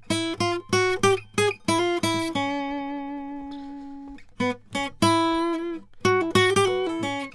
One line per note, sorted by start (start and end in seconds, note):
0.11 0.37 E4
0.41 0.64 F4
0.73 0.99 F#4
1.04 1.20 G4
1.39 1.54 G#4
1.69 1.80 E4
1.80 2.00 F4
2.04 2.40 E4
2.36 4.21 C#4
4.41 4.58 B3
4.76 4.92 C#4
5.03 5.82 E4
6.06 6.16 F#4
6.16 6.34 E4
6.36 6.55 F#4
6.57 6.67 G4
6.67 6.87 F#4
6.67 6.84 B4
6.88 7.14 E4
6.88 7.09 A4
7.04 7.32 C#4